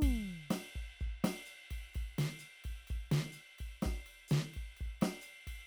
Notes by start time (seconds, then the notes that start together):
0.01 kick, hi-hat pedal, ride
0.09 kick
0.50 snare, hi-hat pedal, ride
0.75 kick
1.00 kick, hi-hat pedal
1.06 kick
1.24 snare, ride
1.46 hi-hat pedal, ride
1.70 kick, ride
1.93 kick, hi-hat pedal, ride
2.01 kick
2.18 snare, ride
2.39 hi-hat pedal, ride
2.64 kick, ride
2.70 kick
2.87 kick, hi-hat pedal, ride
2.95 kick
3.11 snare, ride
3.26 snare
3.32 hi-hat pedal, ride
3.58 kick, ride
3.81 snare, hi-hat pedal, ride
3.85 kick
3.91 kick
4.06 ride
4.28 snare, hi-hat pedal, ride
4.53 kick, ride
4.75 hi-hat pedal, ride
4.81 kick
4.86 kick
5.01 snare, ride
5.21 hi-hat pedal, ride
5.47 kick, ride